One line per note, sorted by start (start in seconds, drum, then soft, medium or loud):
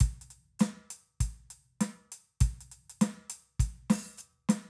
0.01 kick loud
0.01 closed hi-hat loud
0.22 closed hi-hat medium
0.31 closed hi-hat medium
0.60 closed hi-hat loud
0.60 snare loud
0.91 closed hi-hat loud
1.21 kick medium
1.21 closed hi-hat loud
1.51 closed hi-hat medium
1.81 snare loud
1.81 closed hi-hat loud
2.12 closed hi-hat medium
2.41 kick loud
2.41 closed hi-hat loud
2.61 closed hi-hat medium
2.72 closed hi-hat medium
2.90 closed hi-hat medium
3.02 snare loud
3.02 closed hi-hat loud
3.30 closed hi-hat loud
3.60 kick loud
3.60 closed hi-hat loud
3.91 snare loud
3.91 open hi-hat loud
4.18 hi-hat pedal loud
4.50 snare loud
4.50 closed hi-hat loud